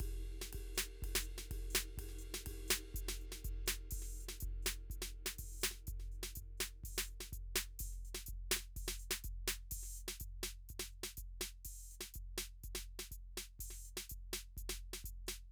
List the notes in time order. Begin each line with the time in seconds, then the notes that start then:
0.06 kick, ride
0.11 snare
0.16 snare
0.41 snare
0.53 kick, ride
0.59 kick
0.75 snare, hi-hat pedal
1.02 kick, ride
1.15 snare
1.21 hi-hat pedal
1.38 snare
1.51 kick, ride
1.70 hi-hat pedal
1.75 snare
1.98 kick, ride
2.09 snare
2.18 hi-hat pedal, ride
2.34 snare
2.46 kick, ride
2.52 kick
2.68 snare, hi-hat pedal
2.94 closed hi-hat, kick
3.08 snare
3.17 closed hi-hat, hi-hat pedal
3.32 snare
3.44 closed hi-hat, kick
3.66 snare, hi-hat pedal
3.91 open hi-hat, kick
4.02 snare
4.20 hi-hat pedal
4.28 snare
4.40 closed hi-hat, kick
4.48 kick
4.62 snare, hi-hat pedal
4.90 closed hi-hat, kick
5.02 snare
5.26 snare
5.38 open hi-hat, kick
5.44 kick
5.61 snare, hi-hat pedal
5.71 snare
5.87 closed hi-hat, kick
5.99 snare
6.11 open hi-hat, hi-hat pedal
6.23 snare
6.35 closed hi-hat, kick
6.42 kick
6.57 snare, hi-hat pedal
6.84 open hi-hat, kick
6.89 kick
6.98 snare
7.04 hi-hat pedal
7.10 closed hi-hat
7.20 snare
7.33 closed hi-hat, kick
7.56 snare
7.79 open hi-hat, kick
7.85 kick
7.92 snare
8.03 hi-hat pedal, open hi-hat
8.14 snare
8.26 closed hi-hat, kick
8.33 kick
8.51 snare
8.56 snare
8.76 open hi-hat, kick
8.88 snare
8.99 closed hi-hat, hi-hat pedal
9.11 snare
9.24 closed hi-hat, kick
9.47 snare
9.71 open hi-hat, kick
9.77 kick
9.83 snare
9.95 open hi-hat, hi-hat pedal
10.08 snare
10.20 closed hi-hat, kick
10.43 snare, hi-hat pedal
10.69 kick, closed hi-hat
10.79 snare
10.89 hi-hat pedal
11.03 snare
11.17 closed hi-hat, kick
11.41 snare
11.65 open hi-hat, kick
11.91 hi-hat pedal
12.01 snare
12.14 closed hi-hat, kick
12.38 snare
12.63 closed hi-hat, kick
12.75 snare
12.99 snare
13.11 closed hi-hat, kick
13.37 snare
13.59 open hi-hat, kick
13.70 snare
13.85 hi-hat pedal
13.97 snare
14.09 closed hi-hat, kick
14.33 snare
14.57 closed hi-hat, kick
14.62 kick
14.69 snare
14.93 snare
15.04 closed hi-hat, kick
15.09 kick
15.27 snare, hi-hat pedal